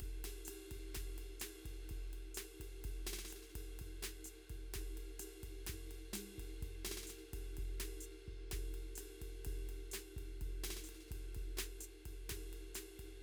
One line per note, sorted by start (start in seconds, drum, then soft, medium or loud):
0.01 kick soft
0.01 ride soft
0.08 kick soft
0.25 snare soft
0.25 ride medium
0.46 hi-hat pedal medium
0.46 ride medium
0.72 kick soft
0.72 ride soft
0.77 kick soft
0.95 kick soft
0.95 snare soft
0.95 ride medium
1.03 kick soft
1.19 ride soft
1.41 snare soft
1.41 hi-hat pedal medium
1.41 ride medium
1.66 kick soft
1.66 ride soft
1.71 kick soft
1.90 kick soft
1.90 ride soft
1.97 kick soft
2.14 ride soft
2.35 snare soft
2.35 hi-hat pedal medium
2.35 ride medium
2.61 kick soft
2.61 ride soft
2.85 kick soft
2.85 ride soft
2.91 kick soft
3.07 snare medium
3.07 ride medium
3.14 snare soft
3.19 snare soft
3.26 snare soft
3.26 hi-hat pedal medium
3.31 snare soft
3.31 ride soft
3.37 snare soft
3.43 snare soft
3.50 snare soft
3.56 kick soft
3.56 snare soft
3.56 ride medium
3.61 kick soft
3.61 snare soft
3.65 snare soft
3.80 kick soft
3.80 ride soft
3.87 kick soft
4.03 snare soft
4.03 ride medium
4.25 hi-hat pedal medium
4.25 ride soft
4.50 kick soft
4.50 ride soft
4.56 kick soft
4.75 kick soft
4.75 snare soft
4.75 ride medium
4.81 kick soft
4.98 ride soft
5.20 snare soft
5.20 hi-hat pedal medium
5.20 ride medium
5.44 kick soft
5.44 ride soft
5.49 kick soft
5.67 kick soft
5.67 snare soft
5.67 ride medium
5.75 kick soft
5.92 ride soft
6.14 snare medium
6.14 hi-hat pedal medium
6.14 mid tom soft
6.14 ride medium
6.39 kick soft
6.39 ride soft
6.44 kick soft
6.63 kick soft
6.63 ride soft
6.69 kick soft
6.86 snare medium
6.86 ride medium
6.92 snare soft
6.98 snare soft
7.04 snare soft
7.08 snare soft
7.08 hi-hat pedal medium
7.08 ride soft
7.19 snare soft
7.26 snare soft
7.34 kick soft
7.34 ride medium
7.39 kick soft
7.58 kick soft
7.58 ride soft
7.64 kick soft
7.81 snare soft
7.81 ride medium
8.01 hi-hat pedal medium
8.28 kick soft
8.28 ride soft
8.34 kick soft
8.52 kick soft
8.52 snare soft
8.52 ride medium
8.59 kick soft
8.75 ride soft
8.96 snare soft
8.96 hi-hat pedal medium
8.96 ride medium
9.22 kick soft
9.22 ride soft
9.45 kick soft
9.45 snare soft
9.45 ride medium
9.53 kick soft
9.70 ride soft
9.92 snare soft
9.92 hi-hat pedal medium
9.92 ride medium
10.17 kick soft
10.17 ride soft
10.23 kick soft
10.42 kick soft
10.42 ride soft
10.48 kick soft
10.64 snare medium
10.64 ride medium
10.71 snare soft
10.77 snare soft
10.85 snare soft
10.85 hi-hat pedal medium
10.90 snare soft
10.90 ride soft
10.95 snare soft
11.01 snare soft
11.09 kick soft
11.09 snare soft
11.09 ride soft
11.17 kick soft
11.36 kick soft
11.36 ride soft
11.43 kick soft
11.58 snare soft
11.58 snare medium
11.58 ride medium
11.81 hi-hat pedal medium
11.81 ride soft
12.06 kick soft
12.06 ride soft
12.12 kick soft
12.30 kick soft
12.30 snare soft
12.30 hi-hat pedal soft
12.30 ride medium
12.38 kick soft
12.54 ride soft
12.63 snare soft
12.75 snare soft
12.75 hi-hat pedal medium
12.75 ride medium
13.00 kick soft
13.00 ride soft